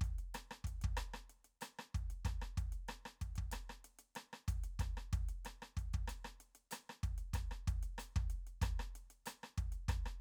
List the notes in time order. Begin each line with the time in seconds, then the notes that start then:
0.01 kick, closed hi-hat
0.18 closed hi-hat
0.34 cross-stick, closed hi-hat
0.51 cross-stick
0.64 kick, closed hi-hat
0.82 kick, closed hi-hat
0.97 cross-stick, closed hi-hat
1.14 cross-stick
1.30 closed hi-hat
1.45 closed hi-hat
1.61 closed hi-hat, cross-stick
1.79 cross-stick
1.95 kick, closed hi-hat
2.10 closed hi-hat
2.25 kick, cross-stick, closed hi-hat
2.42 cross-stick
2.57 kick, closed hi-hat
2.72 closed hi-hat
2.88 cross-stick, closed hi-hat
3.05 cross-stick
3.21 kick, closed hi-hat
3.36 kick, closed hi-hat
3.52 cross-stick, closed hi-hat
3.70 cross-stick
3.84 closed hi-hat
3.99 closed hi-hat
4.15 cross-stick, closed hi-hat
4.33 cross-stick
4.48 kick, closed hi-hat
4.64 closed hi-hat
4.79 kick, cross-stick, closed hi-hat
4.97 cross-stick
5.13 kick, closed hi-hat
5.29 closed hi-hat
5.45 cross-stick, closed hi-hat
5.62 cross-stick
5.77 kick, closed hi-hat
5.93 kick, closed hi-hat
6.08 cross-stick, closed hi-hat
6.25 cross-stick
6.40 closed hi-hat
6.55 closed hi-hat
6.71 closed hi-hat, cross-stick
6.89 cross-stick
7.03 kick, closed hi-hat
7.18 closed hi-hat
7.34 kick, cross-stick, closed hi-hat
7.51 cross-stick
7.68 kick, closed hi-hat
7.83 closed hi-hat
7.98 closed hi-hat, cross-stick
8.16 kick, cross-stick
8.30 closed hi-hat
8.47 closed hi-hat
8.62 kick, cross-stick, closed hi-hat
8.79 cross-stick
8.95 closed hi-hat
9.10 closed hi-hat
9.26 closed hi-hat, cross-stick
9.43 cross-stick
9.58 kick, closed hi-hat
9.72 closed hi-hat
9.88 kick, cross-stick, closed hi-hat
10.06 cross-stick